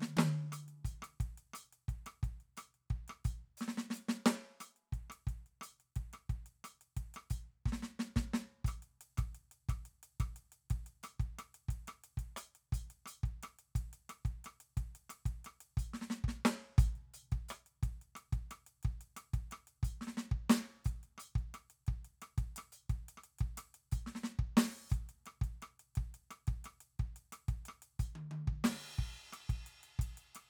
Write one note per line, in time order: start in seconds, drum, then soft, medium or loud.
0.01 snare medium
0.01 high tom medium
0.17 snare medium
0.17 high tom loud
0.53 closed hi-hat medium
0.53 cross-stick medium
0.68 closed hi-hat soft
0.85 closed hi-hat soft
0.85 kick soft
1.03 cross-stick medium
1.03 closed hi-hat soft
1.20 kick soft
1.20 closed hi-hat soft
1.38 closed hi-hat soft
1.54 closed hi-hat medium
1.54 cross-stick medium
1.73 closed hi-hat soft
1.89 kick soft
1.89 closed hi-hat soft
2.06 cross-stick medium
2.06 closed hi-hat soft
2.23 kick medium
2.23 closed hi-hat soft
2.41 closed hi-hat soft
2.57 closed hi-hat medium
2.57 cross-stick medium
2.75 closed hi-hat soft
2.90 kick soft
2.90 closed hi-hat soft
3.08 cross-stick medium
3.08 closed hi-hat soft
3.25 closed hi-hat medium
3.25 kick medium
3.57 snare medium
3.57 hi-hat pedal soft
3.68 snare medium
3.78 snare medium
3.91 snare medium
3.91 hi-hat pedal medium
4.09 snare medium
4.26 snare loud
4.61 closed hi-hat medium
4.61 cross-stick medium
4.77 closed hi-hat soft
4.93 kick soft
4.93 closed hi-hat soft
5.10 cross-stick medium
5.10 closed hi-hat soft
5.27 kick soft
5.27 closed hi-hat soft
5.47 closed hi-hat soft
5.62 closed hi-hat medium
5.62 cross-stick medium
5.80 closed hi-hat soft
5.96 kick soft
5.96 closed hi-hat soft
6.13 cross-stick medium
6.13 closed hi-hat soft
6.30 kick soft
6.30 closed hi-hat soft
6.46 closed hi-hat soft
6.65 closed hi-hat medium
6.65 cross-stick medium
6.81 closed hi-hat soft
6.97 kick soft
6.97 closed hi-hat soft
7.15 cross-stick medium
7.15 closed hi-hat soft
7.31 closed hi-hat medium
7.31 kick soft
7.66 kick medium
7.66 snare soft
7.73 snare medium
7.83 snare soft
8.00 snare medium
8.16 kick medium
8.16 snare medium
8.34 snare medium
8.65 closed hi-hat medium
8.65 kick medium
8.65 cross-stick medium
8.83 closed hi-hat soft
9.01 closed hi-hat soft
9.18 kick medium
9.18 cross-stick medium
9.18 closed hi-hat soft
9.35 closed hi-hat soft
9.52 closed hi-hat soft
9.69 kick medium
9.69 cross-stick medium
9.69 closed hi-hat soft
9.86 closed hi-hat soft
10.03 closed hi-hat soft
10.20 kick medium
10.20 cross-stick medium
10.20 closed hi-hat soft
10.36 closed hi-hat soft
10.52 closed hi-hat soft
10.70 kick medium
10.70 closed hi-hat soft
10.87 closed hi-hat soft
11.03 closed hi-hat medium
11.03 cross-stick medium
11.20 kick medium
11.20 closed hi-hat soft
11.39 cross-stick medium
11.39 closed hi-hat soft
11.55 closed hi-hat soft
11.69 kick soft
11.69 closed hi-hat soft
11.88 cross-stick medium
11.88 closed hi-hat soft
12.04 closed hi-hat soft
12.18 kick soft
12.18 closed hi-hat soft
12.37 closed hi-hat medium
12.37 cross-stick medium
12.55 closed hi-hat soft
12.73 closed hi-hat medium
12.73 kick medium
12.91 closed hi-hat soft
13.06 closed hi-hat medium
13.06 cross-stick medium
13.24 kick medium
13.24 closed hi-hat soft
13.43 cross-stick medium
13.43 closed hi-hat soft
13.59 closed hi-hat soft
13.76 kick medium
13.76 closed hi-hat medium
13.93 closed hi-hat soft
14.10 cross-stick medium
14.10 closed hi-hat soft
14.25 kick medium
14.25 closed hi-hat soft
14.45 cross-stick medium
14.45 closed hi-hat soft
14.61 closed hi-hat soft
14.77 kick medium
14.77 closed hi-hat soft
14.95 closed hi-hat soft
15.10 cross-stick medium
15.10 closed hi-hat medium
15.26 kick medium
15.26 closed hi-hat soft
15.45 cross-stick medium
15.45 closed hi-hat soft
15.61 closed hi-hat soft
15.77 closed hi-hat medium
15.77 kick medium
15.94 snare soft
16.02 snare soft
16.10 snare medium
16.24 kick medium
16.28 snare soft
16.45 snare loud
16.62 snare soft
16.78 closed hi-hat medium
16.78 kick loud
16.96 closed hi-hat soft
17.14 closed hi-hat medium
17.32 kick medium
17.32 closed hi-hat soft
17.49 closed hi-hat medium
17.49 cross-stick medium
17.67 closed hi-hat soft
17.83 kick medium
17.83 closed hi-hat soft
18.02 closed hi-hat soft
18.16 cross-stick medium
18.16 closed hi-hat soft
18.33 kick medium
18.33 closed hi-hat soft
18.51 cross-stick medium
18.51 closed hi-hat soft
18.67 closed hi-hat soft
18.83 kick medium
18.83 closed hi-hat soft
19.01 closed hi-hat soft
19.17 cross-stick medium
19.17 closed hi-hat medium
19.34 kick medium
19.34 closed hi-hat soft
19.52 cross-stick medium
19.52 closed hi-hat soft
19.68 closed hi-hat soft
19.83 closed hi-hat medium
19.83 kick medium
20.01 snare soft
20.07 snare soft
20.18 snare medium
20.32 kick medium
20.50 open hi-hat medium
20.50 snare loud
20.85 kick medium
20.85 closed hi-hat soft
20.85 hi-hat pedal soft
21.03 closed hi-hat soft
21.18 closed hi-hat medium
21.18 cross-stick medium
21.36 kick medium
21.36 closed hi-hat soft
21.54 cross-stick medium
21.54 closed hi-hat soft
21.70 closed hi-hat soft
21.87 kick medium
21.87 closed hi-hat soft
22.05 closed hi-hat soft
22.22 cross-stick medium
22.22 closed hi-hat soft
22.38 kick medium
22.38 closed hi-hat soft
22.57 cross-stick medium
22.57 closed hi-hat medium
22.73 closed hi-hat soft
22.90 kick medium
22.90 closed hi-hat soft
23.09 closed hi-hat soft
23.18 cross-stick soft
23.24 closed hi-hat soft
23.39 kick medium
23.39 closed hi-hat soft
23.58 cross-stick medium
23.58 closed hi-hat medium
23.75 closed hi-hat soft
23.92 closed hi-hat medium
23.92 kick medium
24.07 snare soft
24.15 snare soft
24.24 snare medium
24.39 kick medium
24.57 open hi-hat medium
24.57 snare loud
24.90 kick medium
24.90 hi-hat pedal soft
24.94 closed hi-hat soft
25.09 closed hi-hat soft
25.26 cross-stick medium
25.26 closed hi-hat soft
25.42 kick medium
25.42 closed hi-hat soft
25.62 cross-stick medium
25.62 closed hi-hat soft
25.80 closed hi-hat soft
25.96 kick medium
25.96 closed hi-hat soft
26.15 closed hi-hat soft
26.31 cross-stick medium
26.31 closed hi-hat soft
26.47 kick medium
26.47 closed hi-hat soft
26.65 cross-stick medium
26.65 closed hi-hat soft
26.81 closed hi-hat soft
27.00 kick medium
27.00 closed hi-hat soft
27.16 closed hi-hat soft
27.33 cross-stick medium
27.33 closed hi-hat medium
27.49 kick medium
27.49 closed hi-hat soft
27.66 cross-stick medium
27.66 closed hi-hat soft
27.82 closed hi-hat soft
28.00 closed hi-hat medium
28.00 kick medium
28.16 high tom medium
28.31 high tom medium
28.36 high tom soft
28.48 kick medium
28.64 snare loud
28.64 crash medium
28.99 kick medium
29.33 cross-stick medium
29.33 closed hi-hat soft
29.50 kick medium
29.50 closed hi-hat soft
29.67 closed hi-hat soft
29.84 closed hi-hat soft
29.99 kick medium
29.99 closed hi-hat medium
30.18 closed hi-hat soft
30.35 cross-stick medium
30.35 closed hi-hat medium